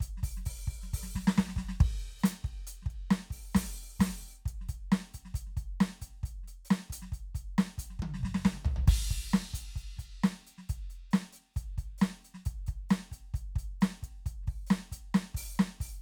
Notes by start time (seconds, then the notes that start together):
0.01 closed hi-hat, kick
0.18 snare
0.24 open hi-hat, kick
0.37 snare
0.46 open hi-hat, kick
0.68 open hi-hat, kick
0.84 snare
0.94 open hi-hat, kick
1.04 snare
1.16 kick, snare
1.28 snare
1.38 kick, snare
1.49 snare
1.57 kick, snare
1.69 snare
1.81 kick, crash
1.98 open hi-hat
2.20 hi-hat pedal
2.24 closed hi-hat, snare
2.45 kick, closed hi-hat
2.67 closed hi-hat
2.83 kick, snare
2.91 closed hi-hat
3.11 snare
3.31 open hi-hat, kick
3.55 open hi-hat, kick, snare
4.00 open hi-hat, kick, snare
4.07 snare
4.21 open hi-hat, kick
4.33 hi-hat pedal
4.46 kick, closed hi-hat
4.62 snare
4.69 closed hi-hat, kick
4.92 snare
5.14 closed hi-hat, kick
5.26 snare
5.35 closed hi-hat, kick
5.47 snare
5.57 closed hi-hat, kick
5.81 snare
6.02 closed hi-hat, kick
6.24 closed hi-hat, kick
6.44 snare
6.48 closed hi-hat
6.65 hi-hat pedal
6.71 snare
6.90 closed hi-hat, kick
7.03 snare
7.13 closed hi-hat, kick
7.35 closed hi-hat, kick
7.59 snare
7.79 closed hi-hat, kick
7.91 snare
8.00 kick, high tom
8.15 snare
8.24 kick, snare
8.35 snare
8.45 kick, snare
8.56 high tom
8.65 kick, floor tom
8.77 floor tom
8.88 kick, crash
9.08 open hi-hat, kick
9.31 snare, hi-hat pedal
9.54 closed hi-hat, kick
9.76 closed hi-hat, kick
9.97 closed hi-hat, kick, snare
10.24 snare
10.47 closed hi-hat
10.59 snare
10.70 closed hi-hat, kick
10.91 closed hi-hat
11.11 snare, hi-hat pedal
11.33 closed hi-hat, hi-hat pedal
11.54 closed hi-hat, kick, hi-hat pedal
11.78 closed hi-hat, kick
11.99 snare, hi-hat pedal
12.25 closed hi-hat
12.35 snare
12.46 closed hi-hat, kick
12.67 closed hi-hat, kick
12.90 snare, hi-hat pedal
13.12 closed hi-hat, kick
13.34 closed hi-hat, kick
13.56 closed hi-hat, kick
13.82 snare, hi-hat pedal
14.03 kick, closed hi-hat
14.26 closed hi-hat, kick
14.43 snare
14.48 open hi-hat, kick
14.67 snare, hi-hat pedal
14.92 closed hi-hat, kick
15.15 snare
15.35 open hi-hat, kick
15.55 hi-hat pedal
15.60 snare
15.81 open hi-hat, kick